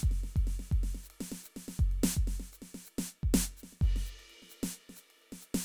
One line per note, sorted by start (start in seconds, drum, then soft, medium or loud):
0.01 kick medium
0.01 hi-hat pedal soft
0.01 ride medium
0.11 snare soft
0.24 snare soft
0.36 kick medium
0.36 ride medium
0.47 snare soft
0.59 snare soft
0.72 kick medium
0.72 ride medium
0.83 snare soft
0.95 snare soft
1.03 hi-hat pedal medium
1.10 ride medium
1.21 snare medium
1.32 snare medium
1.43 hi-hat pedal medium
1.43 ride medium
1.56 snare soft
1.68 snare soft
1.79 kick medium
1.79 ride medium
1.92 ride soft
2.04 snare loud
2.16 kick medium
2.16 ride medium
2.28 snare soft
2.40 snare soft
2.52 hi-hat pedal medium
2.52 ride medium
2.62 snare soft
2.75 snare soft
2.84 hi-hat pedal medium
2.84 ride medium
2.99 snare medium
3.23 kick medium
3.34 snare loud
3.34 ride medium
3.57 hi-hat pedal medium
3.63 snare soft
3.73 snare soft
3.82 kick medium
3.82 ride medium
3.96 snare soft
4.05 hi-hat pedal medium
4.05 ride soft
4.20 ride soft
4.30 ride medium
4.42 snare soft
4.50 hi-hat pedal medium
4.50 ride medium
4.63 snare medium
4.63 ride medium
4.70 hi-hat pedal soft
4.75 ride soft
4.89 snare soft
4.96 hi-hat pedal medium
4.96 ride medium
5.10 ride soft
5.17 hi-hat pedal soft
5.22 ride soft
5.32 snare soft
5.41 hi-hat pedal medium
5.41 ride medium
5.55 snare medium
5.55 ride medium